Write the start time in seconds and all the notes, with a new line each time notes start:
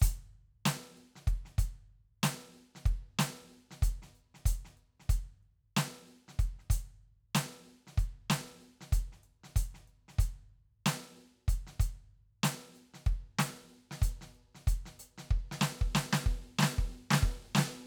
0.01 closed hi-hat, kick, hi-hat pedal
0.66 closed hi-hat, snare
0.95 snare, closed hi-hat
1.16 snare
1.28 kick, closed hi-hat
1.46 snare
1.59 closed hi-hat, kick
2.24 closed hi-hat, snare
2.76 snare
2.86 kick, closed hi-hat
3.20 closed hi-hat, snare
3.72 snare
3.83 closed hi-hat, kick
4.03 snare
4.15 closed hi-hat
4.35 snare
4.46 closed hi-hat, kick
4.66 snare
4.78 closed hi-hat
5.00 snare
5.10 closed hi-hat, kick
5.43 closed hi-hat
5.77 closed hi-hat, snare
6.06 snare, closed hi-hat
6.29 snare
6.40 closed hi-hat, kick
6.60 snare
6.71 closed hi-hat, kick
7.36 closed hi-hat, snare
7.88 snare
7.98 closed hi-hat, kick
8.31 closed hi-hat, snare
8.56 snare
8.63 closed hi-hat
8.82 snare
8.93 closed hi-hat, kick
9.13 snare
9.24 closed hi-hat
9.44 snare
9.57 closed hi-hat, kick
9.75 snare
9.88 closed hi-hat
10.09 snare
10.19 closed hi-hat, kick
10.87 closed hi-hat, snare
10.90 snare
11.40 snare
11.49 closed hi-hat, kick
11.68 snare
11.80 closed hi-hat, kick
12.44 closed hi-hat, snare
12.76 closed hi-hat
12.95 snare
13.07 kick, closed hi-hat
13.11 crash
13.39 closed hi-hat, snare
13.70 closed hi-hat
13.92 snare
14.03 closed hi-hat, kick
14.22 snare
14.36 closed hi-hat
14.55 snare
14.68 closed hi-hat, kick
14.86 snare
15.00 closed hi-hat
15.18 snare
15.31 kick
15.52 snare
15.62 snare
15.82 kick
15.96 snare
16.14 snare
16.27 kick
16.59 snare
16.63 snare
16.79 kick
17.11 snare
17.14 snare
17.23 kick
17.56 snare
17.59 snare